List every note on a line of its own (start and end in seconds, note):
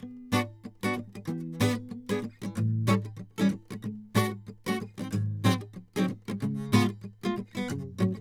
0.01 0.33 B3
0.33 0.48 B3
0.33 0.47 D4
0.33 0.49 F#4
0.33 0.44 B4
0.85 1.04 B3
0.85 0.98 D4
0.85 1.04 F#4
1.26 1.78 E3
1.26 1.60 B3
1.61 1.79 B3
1.61 1.81 D4
1.61 1.82 B4
2.11 2.23 B3
2.11 2.24 D4
2.11 2.25 G#4
2.46 2.53 E3
2.56 2.97 A2
2.56 3.02 E3
2.88 3.03 G3
2.88 3.00 C#4
2.88 3.00 E4
2.88 3.01 A4
3.38 3.51 G3
3.38 3.53 C#4
3.38 3.58 E4
3.38 3.49 A4
3.43 3.51 E3
3.74 3.85 G#3
3.85 4.00 G#3
4.16 4.38 G#3
4.16 4.37 D4
4.16 4.37 F#4
4.16 4.24 B4
4.68 4.89 A3
4.68 4.83 F#4
4.99 5.11 D#3
4.99 5.12 C4
5.12 5.59 G#2
5.12 5.60 D#3
5.45 5.61 F#3
5.45 5.61 C4
5.45 5.57 D#4
5.45 5.57 G#4
5.96 6.15 D3
5.96 6.18 F#3
5.96 6.10 C4
5.96 6.09 D#4
5.96 6.06 G#4
6.32 6.43 G#3
6.41 6.91 C#3
6.41 6.72 G#3
6.73 6.93 G#3
6.73 6.94 B3
6.73 6.89 F4
7.25 7.47 G#3
7.25 7.40 F4
7.57 7.74 B3
7.69 8.15 F#2
7.69 7.94 C#3
8.01 8.16 F#3